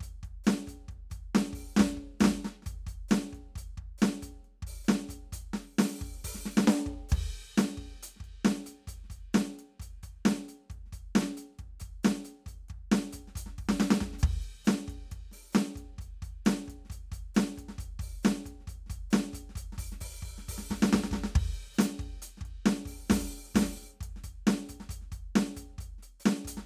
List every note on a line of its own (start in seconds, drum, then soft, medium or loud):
0.01 closed hi-hat medium
0.01 kick medium
0.01 snare soft
0.24 kick soft
0.24 closed hi-hat soft
0.44 snare loud
0.44 hi-hat pedal soft
0.68 closed hi-hat medium
0.68 kick soft
0.89 kick soft
0.89 closed hi-hat soft
1.11 closed hi-hat medium
1.11 kick medium
1.11 snare soft
1.35 snare loud
1.53 open hi-hat medium
1.53 kick soft
1.77 kick soft
1.77 snare loud
1.77 hi-hat pedal soft
1.80 snare loud
1.97 kick soft
2.21 kick soft
2.21 snare loud
2.21 hi-hat pedal medium
2.25 snare loud
2.45 snare medium
2.63 closed hi-hat medium
2.63 kick medium
2.63 snare soft
2.87 closed hi-hat soft
2.87 kick medium
3.09 snare loud
3.09 hi-hat pedal medium
3.33 kick soft
3.33 closed hi-hat soft
3.56 closed hi-hat medium
3.56 kick medium
3.78 kick soft
3.78 closed hi-hat soft
3.99 snare loud
3.99 hi-hat pedal medium
4.23 closed hi-hat medium
4.23 kick soft
4.45 closed hi-hat soft
4.63 kick medium
4.67 open hi-hat medium
4.85 hi-hat pedal soft
4.89 snare loud
5.09 closed hi-hat medium
5.09 kick soft
5.33 closed hi-hat medium
5.33 kick medium
5.54 open hi-hat soft
5.54 snare medium
5.79 open hi-hat loud
5.79 snare loud
5.99 open hi-hat soft
5.99 kick medium
5.99 snare soft
6.17 snare soft
6.25 open hi-hat loud
6.25 kick medium
6.35 snare soft
6.46 snare medium
6.58 snare loud
6.64 snare loud
6.64 hi-hat pedal soft
6.87 kick medium
7.09 kick loud
7.09 hi-hat pedal medium
7.14 crash medium
7.33 closed hi-hat soft
7.58 closed hi-hat medium
7.58 snare loud
7.78 kick soft
8.03 closed hi-hat loud
8.17 kick soft
8.17 snare soft
8.25 closed hi-hat soft
8.45 snare loud
8.67 closed hi-hat medium
8.67 kick soft
8.88 closed hi-hat medium
8.88 kick soft
9.05 snare soft
9.11 closed hi-hat medium
9.11 kick soft
9.34 snare loud
9.34 hi-hat pedal soft
9.59 closed hi-hat medium
9.80 closed hi-hat medium
9.80 kick soft
10.04 closed hi-hat soft
10.04 kick soft
10.26 snare loud
10.32 snare medium
10.49 closed hi-hat medium
10.70 kick soft
10.70 closed hi-hat soft
10.86 snare soft
10.93 closed hi-hat medium
10.93 kick soft
11.16 snare loud
11.16 hi-hat pedal soft
11.21 snare medium
11.38 closed hi-hat medium
11.59 kick soft
11.59 closed hi-hat soft
11.80 closed hi-hat medium
11.80 kick soft
12.04 snare loud
12.04 hi-hat pedal medium
12.25 closed hi-hat medium
12.47 closed hi-hat soft
12.47 kick soft
12.69 kick soft
12.69 closed hi-hat soft
12.92 snare loud
12.92 hi-hat pedal soft
13.13 closed hi-hat medium
13.13 kick soft
13.28 snare soft
13.36 closed hi-hat loud
13.36 kick medium
13.47 snare soft
13.59 kick medium
13.59 open hi-hat soft
13.69 snare loud
13.80 snare loud
13.80 hi-hat pedal medium
13.91 snare loud
14.01 kick medium
14.01 snare medium
14.14 snare soft
14.19 hi-hat pedal medium
14.24 kick loud
14.24 crash medium
14.42 closed hi-hat soft
14.65 snare loud
14.65 hi-hat pedal medium
14.88 kick medium
14.88 closed hi-hat soft
15.12 kick soft
15.12 closed hi-hat medium
15.32 open hi-hat medium
15.32 snare soft
15.53 snare loud
15.53 hi-hat pedal medium
15.76 kick soft
15.76 closed hi-hat medium
15.97 kick soft
15.97 snare soft
16.01 closed hi-hat soft
16.23 closed hi-hat soft
16.23 kick medium
16.46 snare loud
16.46 hi-hat pedal medium
16.52 snare medium
16.68 kick soft
16.68 closed hi-hat medium
16.86 snare soft
16.90 closed hi-hat medium
16.90 kick medium
17.12 closed hi-hat medium
17.12 kick medium
17.35 snare loud
17.35 hi-hat pedal medium
17.58 kick soft
17.58 closed hi-hat medium
17.69 snare soft
17.79 closed hi-hat medium
17.79 kick medium
18.00 open hi-hat medium
18.00 kick medium
18.24 snare loud
18.24 hi-hat pedal medium
18.46 kick soft
18.46 closed hi-hat medium
18.61 snare soft
18.68 closed hi-hat medium
18.68 kick medium
18.87 closed hi-hat medium
18.87 kick medium
18.87 snare soft
19.11 snare loud
19.11 hi-hat pedal medium
19.34 closed hi-hat medium
19.34 kick soft
19.50 snare soft
19.56 closed hi-hat medium
19.56 kick medium
19.73 snare soft
19.79 open hi-hat medium
19.79 kick medium
19.92 snare soft
20.01 open hi-hat loud
20.01 kick medium
20.23 open hi-hat medium
20.23 kick medium
20.39 snare soft
20.49 open hi-hat loud
20.49 kick medium
20.59 snare soft
20.71 kick soft
20.71 snare medium
20.83 snare loud
20.93 kick soft
20.93 snare loud
21.04 snare medium
21.12 kick medium
21.12 snare medium
21.24 snare medium
21.36 kick loud
21.36 crash medium
21.53 open hi-hat soft
21.75 hi-hat pedal soft
21.79 closed hi-hat loud
21.79 snare loud
22.00 kick medium
22.00 closed hi-hat soft
22.22 closed hi-hat loud
22.38 kick medium
22.38 snare soft
22.46 closed hi-hat soft
22.66 snare loud
22.86 open hi-hat medium
22.86 kick soft
23.10 open hi-hat loud
23.10 kick medium
23.10 snare loud
23.55 open hi-hat loud
23.55 kick medium
23.55 snare loud
23.62 snare medium
23.76 open hi-hat soft
23.76 kick soft
23.88 hi-hat pedal soft
24.01 kick medium
24.01 closed hi-hat medium
24.17 snare soft
24.24 closed hi-hat medium
24.24 kick soft
24.47 snare loud
24.69 closed hi-hat medium
24.69 kick soft
24.81 snare soft
24.90 closed hi-hat medium
24.90 kick medium
25.02 snare soft
25.12 closed hi-hat soft
25.12 kick medium
25.36 snare loud
25.57 closed hi-hat medium
25.57 kick soft
25.79 closed hi-hat medium
25.79 kick medium
25.99 snare soft
26.03 closed hi-hat medium
26.20 hi-hat pedal medium
26.26 snare loud
26.45 closed hi-hat loud
26.45 kick soft
26.58 snare soft